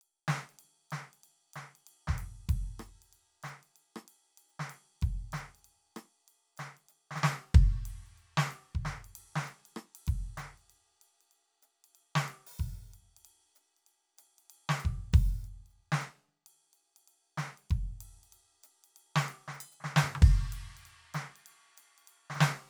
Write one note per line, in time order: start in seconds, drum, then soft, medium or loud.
0.01 ride soft
0.28 snare loud
0.28 ride soft
0.49 ride soft
0.59 ride soft
0.91 snare medium
0.91 ride soft
1.13 ride soft
1.23 ride soft
1.53 snare soft
1.53 ride soft
1.75 ride soft
1.87 ride soft
2.07 kick medium
2.07 snare medium
2.18 ride medium
2.49 kick medium
2.49 ride medium
2.79 cross-stick medium
2.79 ride soft
2.85 hi-hat pedal soft
3.02 ride soft
3.13 ride soft
3.43 snare medium
3.43 ride soft
3.47 hi-hat pedal medium
3.63 ride soft
3.76 ride soft
3.96 cross-stick medium
4.08 ride soft
4.38 ride soft
4.49 hi-hat pedal soft
4.59 snare medium
4.70 ride soft
5.02 kick medium
5.02 ride soft
5.32 snare medium
5.32 ride soft
5.37 hi-hat pedal soft
5.55 hi-hat pedal soft
5.55 ride soft
5.64 ride soft
5.96 cross-stick medium
5.96 hi-hat pedal soft
5.96 ride soft
6.28 ride soft
6.57 snare medium
6.57 hi-hat pedal medium
6.57 ride soft
6.77 ride soft
6.89 hi-hat pedal soft
6.89 ride soft
7.11 snare medium
7.16 snare medium
7.16 hi-hat pedal soft
7.23 snare loud
7.54 kick loud
7.54 crash soft
7.85 ride medium
8.06 ride soft
8.18 ride soft
8.37 snare loud
8.51 ride soft
8.75 kick medium
8.85 snare medium
9.04 ride soft
9.15 ride medium
9.36 snare medium
9.43 hi-hat pedal soft
9.47 ride soft
9.65 ride soft
9.76 cross-stick medium
9.95 ride medium
10.07 kick medium
10.07 ride medium
10.37 snare medium
10.37 hi-hat pedal soft
10.37 ride soft
10.58 ride soft
10.70 ride soft
11.01 ride soft
11.21 ride soft
11.31 ride soft
11.62 hi-hat pedal soft
11.62 ride soft
11.84 ride soft
11.95 ride soft
12.15 snare loud
12.19 hi-hat pedal soft
12.28 ride soft
12.46 open hi-hat medium
12.59 kick medium
12.59 ride soft
12.93 hi-hat pedal soft
12.93 ride soft
13.17 ride soft
13.25 ride soft
13.55 hi-hat pedal soft
13.55 ride soft
13.77 ride soft
13.86 ride soft
14.18 hi-hat pedal soft
14.18 ride soft
14.38 ride soft
14.50 ride soft
14.68 snare medium
14.68 hi-hat pedal soft
14.80 ride bell soft
14.85 kick medium
15.13 open hi-hat medium
15.13 kick loud
15.13 ride bell soft
15.44 hi-hat pedal soft
15.44 ride soft
15.66 hi-hat pedal soft
15.66 ride soft
15.92 snare loud
16.00 hi-hat pedal soft
16.46 ride soft
16.73 ride soft
16.96 ride soft
17.08 ride soft
17.38 snare medium
17.38 ride soft
17.58 ride soft
17.70 kick medium
17.70 ride soft
18.00 hi-hat pedal soft
18.00 ride medium
18.23 ride soft
18.32 ride soft
18.63 hi-hat pedal medium
18.63 ride soft
18.84 ride soft
18.96 ride soft
19.16 snare loud
19.21 hi-hat pedal medium
19.28 ride soft
19.48 snare medium
19.54 hi-hat pedal soft
19.60 ride bell medium
19.71 hi-hat pedal soft
19.80 snare soft
19.84 snare medium
19.96 snare loud
19.96 hi-hat pedal soft
20.02 mid tom medium
20.15 high tom medium
20.22 kick loud
20.22 crash medium
20.52 ride medium
20.77 ride soft
20.85 ride soft
21.14 snare medium
21.14 hi-hat pedal medium
21.14 ride soft
21.36 ride soft
21.46 ride soft
21.77 hi-hat pedal soft
21.77 ride soft
21.98 ride soft
22.04 hi-hat pedal soft
22.04 ride soft
22.30 snare medium
22.30 hi-hat pedal soft
22.35 snare medium
22.40 snare loud